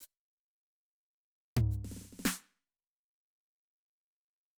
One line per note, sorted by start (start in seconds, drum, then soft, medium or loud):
0.00 hi-hat pedal medium
1.57 floor tom loud
1.71 hi-hat pedal soft
1.84 snare soft
1.91 snare soft
1.96 snare soft
2.01 snare soft
2.05 snare soft
2.12 snare soft
2.19 snare soft
2.25 snare medium
2.25 hi-hat pedal medium